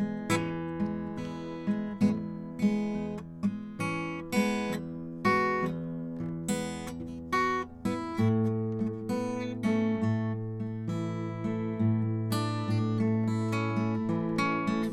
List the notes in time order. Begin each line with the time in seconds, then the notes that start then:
0.00 G#3
0.31 E3
0.37 C#4
0.81 G#3
1.18 E2 B3 E4
1.68 G#3
2.02 E2 G#3 B3
2.60 G#3 B3
2.96 E2
3.44 G#3
3.80 E3 C#4
4.33 B3
4.37 G#3
4.71 E2
5.25 G#3 B3
5.34 F#4
5.62 E2
6.21 E3
6.48 B3
7.01 E3
7.09 B3
7.33 B3 F#4
7.86 B3 E4
8.20 A2
8.82 A3
9.10 B3
9.64 A3 C#4
10.03 A2
10.61 A3
10.89 E3 E4
11.45 A3
11.81 A2
12.33 A3 D4
12.69 A2
12.99 A3 C#4
13.28 E4
13.53 C#4
13.77 A3
14.10 E3
14.39 C#4
14.68 A3